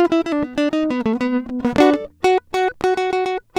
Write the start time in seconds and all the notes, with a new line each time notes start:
0.00 F4
0.14 E4
0.28 E4
0.38 D4
0.45 B3
0.59 D4
0.75 D#4
0.92 B3
1.08 A3
1.23 B3
1.52 B3
1.67 B3
1.80 D4 F#4 B4
1.95 A4 D5
2.26 F#4
2.56 F#4
2.82 F#4
3.00 F#4
3.15 F#4
3.28 F#4